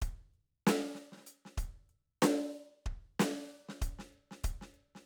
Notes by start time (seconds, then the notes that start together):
0.02 closed hi-hat, kick
0.34 closed hi-hat
0.67 closed hi-hat, snare
0.95 closed hi-hat, snare
1.12 snare
1.16 snare
1.19 snare
1.26 closed hi-hat
1.45 snare
1.57 closed hi-hat, kick
1.89 closed hi-hat
2.22 closed hi-hat, snare
2.54 closed hi-hat
2.86 kick
3.19 closed hi-hat, snare
3.68 snare
3.82 closed hi-hat, kick
3.99 snare
4.12 closed hi-hat
4.31 snare
4.44 closed hi-hat, kick
4.61 snare
4.74 closed hi-hat
4.95 snare